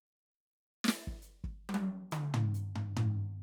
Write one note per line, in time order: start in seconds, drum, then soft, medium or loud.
0.84 snare medium
0.88 snare loud
1.07 kick soft
1.22 hi-hat pedal medium
1.44 kick soft
1.69 high tom loud
1.74 high tom loud
2.11 hi-hat pedal medium
2.11 mid tom loud
2.34 floor tom loud
2.54 hi-hat pedal medium
2.76 floor tom loud
2.97 floor tom loud